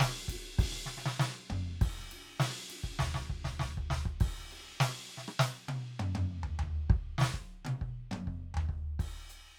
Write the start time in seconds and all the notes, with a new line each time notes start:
0.01 snare, ride
0.29 kick, ride
0.59 kick, ride
0.73 snare
0.87 snare
0.98 snare
1.06 snare
1.20 snare
1.51 kick, mid tom
1.82 kick, crash
2.12 ride
2.41 snare, ride
2.71 ride
2.85 kick
3.00 snare, floor tom
3.15 snare, floor tom
3.31 kick
3.45 snare, floor tom
3.60 snare, floor tom
3.78 kick
3.91 snare, floor tom
4.06 kick
4.21 kick, crash
4.52 ride
4.81 snare, ride
5.09 ride
5.18 snare
5.29 cross-stick
5.40 snare
5.69 high tom
6.00 mid tom
6.16 mid tom
6.44 floor tom
6.60 floor tom
6.64 kick
6.91 kick
7.19 snare
7.22 snare
7.35 kick
7.66 high tom
7.67 high tom
7.82 kick
8.12 mid tom
8.14 mid tom
8.28 kick
8.55 floor tom
8.58 floor tom
8.70 kick
9.00 kick, crash
9.30 closed hi-hat